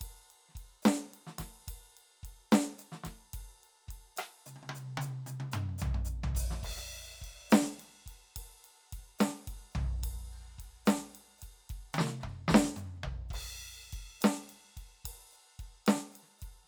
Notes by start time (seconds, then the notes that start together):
0.01 kick, ride
0.30 ride
0.49 snare
0.55 kick, ride
0.82 snare, hi-hat pedal, ride
1.14 ride
1.27 snare
1.39 kick, snare, ride
1.67 kick, hi-hat pedal, ride
1.74 kick
1.97 ride
2.23 kick, ride
2.52 snare, hi-hat pedal, ride
2.79 hi-hat pedal, ride
2.92 snare
3.04 kick, snare, ride
3.34 kick, ride
3.40 kick
3.64 ride
3.87 kick, snare, ride
4.17 cross-stick, hi-hat pedal, ride
4.46 hi-hat pedal, high tom
4.56 high tom
4.63 high tom
4.69 high tom
4.75 hi-hat pedal
4.98 hi-hat pedal, high tom
5.27 hi-hat pedal, high tom
5.40 open hi-hat, high tom
5.52 hi-hat pedal, mid tom
5.69 mid tom
5.78 floor tom, hi-hat pedal
5.95 mid tom
6.05 hi-hat pedal
6.24 floor tom
6.35 kick, hi-hat pedal
6.42 kick
6.51 snare
6.57 snare
6.63 kick, crash
6.70 kick
6.74 kick, cross-stick
7.22 kick, ride
7.50 snare, hi-hat pedal, ride
7.62 snare
7.78 snare, ride
7.88 snare
7.93 snare
7.97 snare
7.99 snare
8.06 kick, ride
8.36 kick, ride
8.64 ride
8.93 kick, ride
8.99 kick
9.19 snare, hi-hat pedal, ride
9.27 snare
9.48 kick, ride
9.54 kick
9.72 kick, floor tom, hi-hat pedal
10.03 kick, ride
10.09 kick
10.33 ride
10.39 snare
10.43 snare
10.46 snare
10.48 snare
10.59 kick, ride
10.86 snare, hi-hat pedal, ride
10.97 snare
11.11 hi-hat pedal, ride
11.38 hi-hat pedal, ride
11.43 kick
11.70 kick, ride
11.77 kick
11.94 hi-hat pedal, high tom
11.98 snare
12.07 snare
12.20 kick, snare, mid tom
12.28 snare
12.31 snare
12.48 kick, snare
12.55 snare
12.63 snare
12.76 hi-hat pedal, mid tom
12.85 snare
12.94 snare
13.04 kick, floor tom
13.09 kick
13.29 kick, cross-stick, hi-hat pedal
13.34 crash
13.38 kick
13.92 kick, snare, ride
13.99 kick
14.21 snare, hi-hat pedal, ride
14.49 ride
14.77 kick, ride
15.05 kick, ride
15.10 kick
15.31 hi-hat pedal, ride
15.59 kick, ride
15.87 snare, hi-hat pedal, ride
15.95 snare
16.12 hi-hat pedal, ride
16.23 snare
16.39 kick, hi-hat pedal, ride
16.64 snare